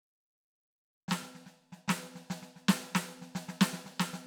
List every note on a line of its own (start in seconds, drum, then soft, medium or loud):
1.08 snare soft
1.11 snare loud
1.23 snare soft
1.35 snare soft
1.46 snare soft
1.61 snare soft
1.72 snare soft
1.88 snare medium
1.88 snare loud
2.03 snare soft
2.15 snare soft
2.30 snare medium
2.42 snare soft
2.56 snare soft
2.68 snare loud
2.81 snare soft
2.95 snare loud
3.06 snare soft
3.21 snare soft
3.35 snare medium
3.48 snare soft
3.61 snare loud
3.73 snare soft
3.86 snare soft
4.00 snare loud
4.13 snare soft